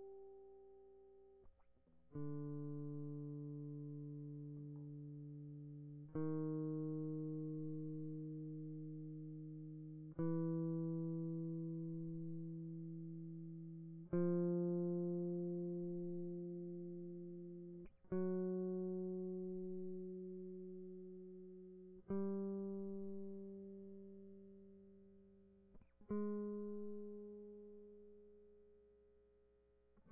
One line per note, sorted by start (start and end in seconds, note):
6.16 10.15 D#3
10.19 14.10 E3
14.14 17.89 F3
18.12 22.02 F#3
22.11 25.26 G3
26.11 29.05 G#3